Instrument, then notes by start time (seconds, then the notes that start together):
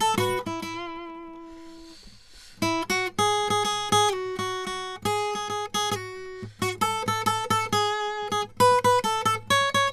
acoustic guitar
0.02 A4
0.19 F#4 B4
0.48 E4
0.64 E4
2.63 E4
2.91 F#4
3.19 G#4
3.52 G#4
3.64 G#4
3.93 G#4
4.10 F#4
4.41 F#4
4.64 F#4
5.06 G#4
5.20 G#4
5.32 G#4
5.49 G#4
5.75 G#4
5.93 F#4
6.63 F#4
6.82 A4
7.09 A4
7.27 A4
7.51 A4
7.74 G#4
8.33 G#4
8.61 B4
8.85 B4
9.05 A4
9.27 A4
9.51 C#5
9.75 C#5